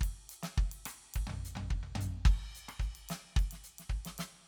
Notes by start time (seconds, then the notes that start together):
0.01 kick, ride
0.29 hi-hat pedal, ride
0.43 snare, ride
0.58 kick
0.72 ride
0.86 cross-stick, hi-hat pedal, ride
1.14 kick, ride
1.27 floor tom, high tom
1.45 hi-hat pedal
1.55 floor tom, high tom
1.70 kick
1.83 floor tom
1.95 floor tom, high tom
2.01 hi-hat pedal
2.25 kick, hi-hat pedal, ride
2.55 hi-hat pedal, ride
2.69 cross-stick, ride
2.80 kick, hi-hat pedal
2.95 ride
3.09 snare, hi-hat pedal, ride
3.36 kick, ride
3.51 snare, ride
3.64 hi-hat pedal
3.79 snare, ride
3.90 kick, hi-hat pedal
4.05 snare, ride
4.18 snare, hi-hat pedal, ride